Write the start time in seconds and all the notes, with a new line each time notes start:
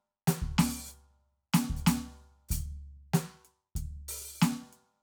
0.29 open hi-hat, snare
0.43 kick
0.59 open hi-hat, snare
0.89 hi-hat pedal
1.54 closed hi-hat, snare, hi-hat pedal
1.71 kick
1.78 hi-hat pedal
1.88 closed hi-hat, snare
2.50 closed hi-hat, kick, hi-hat pedal
3.15 closed hi-hat, snare
3.46 closed hi-hat
3.77 kick, closed hi-hat
4.09 open hi-hat
4.42 closed hi-hat, snare, hi-hat pedal
4.74 closed hi-hat